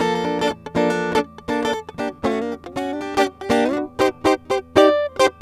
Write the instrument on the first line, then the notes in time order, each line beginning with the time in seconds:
acoustic guitar
0.00 F3 A#3 A4
0.15 A4
0.26 D4 A4
0.43 A#3 D4 A4
0.76 F3 A#3 D4 A4
0.91 A#3 D4
1.17 A#3 D4 A4
1.49 A#3 D4 A4
1.64 D4 A4
1.74 A4
1.99 A#3 D4 G4
2.25 A3 C#4
2.38 D4
2.44 A#3
2.77 C#4 F#4
2.89 F#4
2.94 D4
3.02 D4 G4
3.19 A#3 C#4 G4
3.52 D4 G4
3.78 F#4
4.00 D#4 G4 C5
4.26 D#4 G4 C5
4.36 D4
4.51 G4 C5
4.77 D#4 G4 D5
5.21 D#4 G4 C5